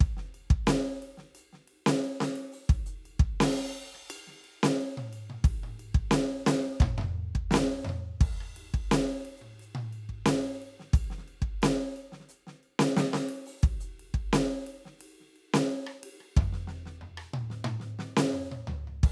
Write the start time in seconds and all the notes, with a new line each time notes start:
0.01 kick, ride bell
0.17 snare
0.35 ride bell
0.51 kick
0.67 snare, ride bell
1.03 ride
1.18 snare
1.35 hi-hat pedal, ride bell
1.53 snare
1.68 ride
1.87 snare
1.92 hi-hat pedal
2.04 ride bell
2.21 snare
2.36 ride
2.52 open hi-hat
2.70 kick, ride
2.87 closed hi-hat
3.06 ride bell
3.20 kick
3.41 snare, crash
3.75 ride bell
3.95 cross-stick
4.11 ride bell
4.28 snare
4.45 ride
4.64 snare
4.82 ride
4.98 high tom
5.13 ride bell
5.30 high tom
5.45 kick, ride
5.64 high tom
5.80 ride bell
5.95 kick
6.12 snare, ride bell
6.47 snare, ride bell
6.81 kick, mid tom, high tom
6.98 mid tom, high tom
7.36 kick
7.51 snare
7.55 snare
7.85 mid tom
7.90 high tom
8.21 kick, crash
8.41 cross-stick
8.57 ride
8.74 kick
8.92 snare, ride
9.26 ride
9.37 hi-hat pedal
9.42 high tom
9.60 hi-hat pedal, ride
9.75 high tom
9.93 ride bell
10.10 kick
10.26 snare, ride
10.62 ride
10.80 snare
10.94 kick, ride bell
11.05 ride
11.11 snare
11.19 snare
11.28 ride bell
11.42 kick
11.63 snare, ride bell
11.97 ride bell
12.13 snare
12.20 snare
12.29 hi-hat pedal, ride bell
12.47 snare
12.63 ride bell
12.80 snare
12.87 hi-hat pedal
12.97 snare
13.14 snare
13.29 ride
13.46 open hi-hat
13.63 kick, hi-hat pedal, ride
13.81 closed hi-hat
14.00 ride
14.14 kick
14.33 snare, ride
14.67 ride
14.86 snare
14.99 hi-hat pedal, ride
15.21 snare
15.36 ride
15.54 snare
15.71 ride
15.87 cross-stick
16.04 ride
16.21 cross-stick
16.37 kick, mid tom
16.53 snare
16.68 snare
16.86 snare
17.02 mid tom
17.18 cross-stick
17.34 high tom
17.51 snare
17.65 high tom
17.80 snare
17.99 snare
18.17 snare
18.34 mid tom
18.52 high tom
18.68 floor tom
18.88 floor tom
19.04 kick, crash